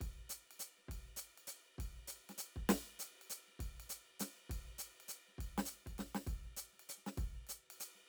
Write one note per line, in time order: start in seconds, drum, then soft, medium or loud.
0.01 kick soft
0.01 ride medium
0.30 hi-hat pedal medium
0.30 ride soft
0.51 ride soft
0.60 hi-hat pedal medium
0.60 ride soft
0.79 snare soft
0.89 kick soft
0.89 ride medium
1.17 hi-hat pedal medium
1.17 ride soft
1.38 ride soft
1.48 hi-hat pedal medium
1.48 ride medium
1.79 kick soft
1.79 ride medium
1.98 snare soft
2.08 hi-hat pedal medium
2.08 ride medium
2.29 snare soft
2.29 ride soft
2.38 hi-hat pedal medium
2.38 ride medium
2.56 kick soft
2.69 snare loud
2.69 ride medium
3.00 hi-hat pedal medium
3.00 ride medium
3.22 ride soft
3.30 hi-hat pedal medium
3.30 ride soft
3.48 snare soft
3.60 kick soft
3.60 ride medium
3.80 ride soft
3.90 hi-hat pedal medium
3.90 ride medium
4.20 snare soft
4.20 hi-hat pedal medium
4.20 ride medium
4.50 kick soft
4.50 ride medium
4.79 hi-hat pedal medium
4.79 ride medium
5.01 ride soft
5.09 hi-hat pedal medium
5.09 ride soft
5.29 snare soft
5.39 kick soft
5.39 ride medium
5.58 snare medium
5.66 hi-hat pedal medium
5.66 ride soft
5.87 kick soft
5.87 ride soft
5.99 snare soft
5.99 ride soft
6.15 snare medium
6.27 kick medium
6.27 ride soft
6.45 snare soft
6.57 hi-hat pedal medium
6.57 ride soft
6.73 snare soft
6.80 ride soft
6.89 hi-hat pedal medium
6.89 ride soft
6.98 snare soft
7.07 snare soft
7.18 kick medium
7.18 ride soft
7.47 hi-hat pedal medium
7.47 ride soft
7.71 ride medium
7.81 hi-hat pedal medium
7.81 ride medium
7.95 snare soft
8.00 snare soft